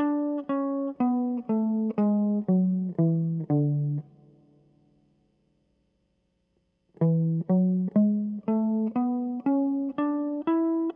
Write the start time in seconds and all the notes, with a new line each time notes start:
0.00 D4
0.50 C#4
1.01 B3
1.50 A3
1.99 G#3
2.50 F#3
3.00 E3
3.51 D3
7.02 E3
7.51 F#3
7.96 G#3
8.49 A3
8.96 B3
9.47 C#4
9.99 D4
10.48 E4